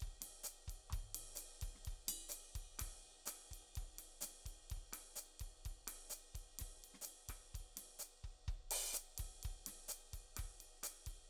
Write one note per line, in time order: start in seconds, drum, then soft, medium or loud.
0.01 kick soft
0.01 ride soft
0.07 kick soft
0.21 snare soft
0.21 ride medium
0.44 hi-hat pedal medium
0.44 ride soft
0.68 kick soft
0.68 ride soft
0.90 kick soft
0.90 mid tom soft
0.90 ride soft
0.94 mid tom soft
0.99 kick soft
0.99 mid tom soft
1.15 ride medium
1.36 hi-hat pedal medium
1.36 ride medium
1.62 kick soft
1.62 ride soft
1.68 kick soft
1.75 snare soft
1.85 kick soft
1.85 ride soft
1.93 kick soft
2.08 snare soft
2.08 ride bell medium
2.29 hi-hat pedal medium
2.29 ride medium
2.56 kick soft
2.56 ride soft
2.79 kick soft
2.79 cross-stick soft
2.79 ride medium
2.87 kick soft
3.26 cross-stick soft
3.26 hi-hat pedal medium
3.26 ride medium
3.51 kick soft
3.51 ride soft
3.76 kick soft
3.76 ride soft
3.82 kick soft
3.99 cross-stick soft
3.99 ride medium
4.21 snare soft
4.21 hi-hat pedal medium
4.21 ride medium
4.46 kick soft
4.46 ride soft
4.70 kick soft
4.70 ride soft
4.77 kick soft
4.93 cross-stick soft
4.93 ride medium
5.16 hi-hat pedal medium
5.16 ride soft
5.40 kick soft
5.40 snare soft
5.40 ride soft
5.66 kick soft
5.66 ride soft
5.71 kick soft
5.88 cross-stick soft
5.88 ride medium
6.10 hi-hat pedal medium
6.10 ride soft
6.35 kick soft
6.35 ride soft
6.59 kick soft
6.59 snare soft
6.59 ride medium
6.84 ride soft
6.94 snare soft
7.02 hi-hat pedal medium
7.02 ride medium
7.29 kick soft
7.29 cross-stick soft
7.29 ride medium
7.55 kick soft
7.55 ride soft
7.60 kick soft
7.77 snare soft
7.77 ride medium
7.99 hi-hat pedal medium
8.24 kick soft
8.48 kick soft
8.48 ride soft
8.71 open hi-hat loud
8.71 ride medium
8.94 hi-hat pedal loud
9.18 kick soft
9.18 ride medium
9.25 kick soft
9.43 kick soft
9.43 ride soft
9.50 kick soft
9.67 snare soft
9.67 ride medium
9.89 hi-hat pedal medium
9.89 ride soft
10.14 kick soft
10.14 ride soft
10.37 kick soft
10.37 cross-stick soft
10.37 ride medium
10.44 kick soft
10.61 ride soft
10.84 cross-stick soft
10.84 hi-hat pedal medium
10.84 ride medium
11.07 kick soft
11.07 ride soft